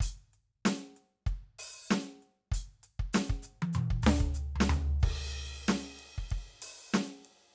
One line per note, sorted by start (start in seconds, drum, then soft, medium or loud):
0.01 closed hi-hat loud
0.01 kick medium
0.34 closed hi-hat soft
0.66 closed hi-hat loud
0.66 snare loud
0.97 closed hi-hat soft
1.27 kick medium
1.27 closed hi-hat soft
1.59 open hi-hat loud
1.90 closed hi-hat medium
1.90 snare loud
1.90 hi-hat pedal medium
2.23 closed hi-hat soft
2.52 closed hi-hat loud
2.52 kick medium
2.84 closed hi-hat medium
3.00 kick medium
3.14 open hi-hat loud
3.14 snare loud
3.14 hi-hat pedal medium
3.30 kick medium
3.43 hi-hat pedal medium
3.63 high tom loud
3.74 hi-hat pedal medium
3.74 mid tom loud
3.91 kick medium
4.03 floor tom loud
4.03 hi-hat pedal medium
4.07 snare loud
4.21 kick medium
4.28 kick soft
4.35 hi-hat pedal medium
4.56 floor tom medium
4.61 snare loud
4.61 hi-hat pedal medium
4.70 floor tom loud
5.01 kick loud
5.01 hi-hat pedal soft
5.01 ride loud
5.31 ride soft
5.66 snare loud
5.66 hi-hat pedal soft
5.66 ride loud
6.00 ride medium
6.19 kick medium
6.31 kick medium
6.31 ride medium
6.63 open hi-hat loud
6.63 ride medium
6.94 snare loud
6.94 hi-hat pedal medium
6.94 ride medium
7.26 ride medium